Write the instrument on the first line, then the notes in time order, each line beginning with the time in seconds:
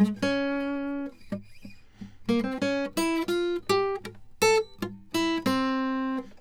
acoustic guitar
0.00 G#3
0.24 C#4
2.30 A#3
2.46 C4
2.63 C#4
2.99 E4
3.30 F4
3.71 G4
4.43 A4
5.16 E4
5.47 C4